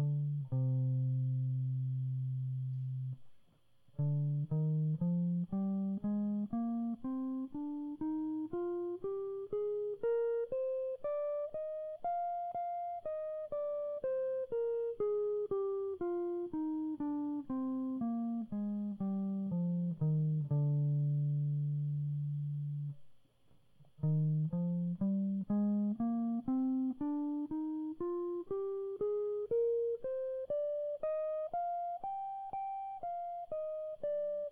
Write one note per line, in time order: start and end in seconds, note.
0.01 0.46 D3
0.53 3.17 C3
4.00 4.48 D3
4.53 4.99 D#3
5.02 5.47 F3
5.53 6.02 G3
6.05 6.48 G#3
6.53 6.98 A#3
7.05 7.48 C4
7.55 7.98 D4
8.01 8.48 D#4
8.53 8.99 F4
9.05 9.49 G4
9.53 9.97 G#4
10.04 10.47 A#4
10.52 10.98 C5
11.04 11.52 D5
11.54 12.00 D#5
12.05 12.54 F5
12.55 13.01 F5
13.06 13.49 D#5
13.52 14.01 D5
14.04 14.46 C5
14.52 14.94 A#4
15.00 15.49 G#4
15.51 15.97 G4
16.01 16.51 F4
16.54 16.97 D#4
17.01 17.44 D4
17.50 18.03 C4
18.02 18.47 A#3
18.53 18.98 G#3
19.01 19.56 G3
19.52 19.96 F3
20.02 20.43 D#3
20.42 20.50 D3
20.52 22.94 D3
24.04 24.50 D#3
24.54 24.97 F3
25.02 25.46 G3
25.51 25.97 G#3
26.01 26.43 A#3
26.48 26.96 C4
27.01 27.49 D4
27.51 27.96 D#4
28.01 28.45 F4
28.51 28.99 G4
29.01 29.48 G#4
29.51 29.97 A#4
30.04 30.47 C5
30.50 30.97 D5
31.03 31.50 D#5
31.54 31.99 F5
32.04 32.53 G5
32.53 33.01 G5
33.03 33.47 F5
33.52 33.98 D#5
34.04 34.50 D5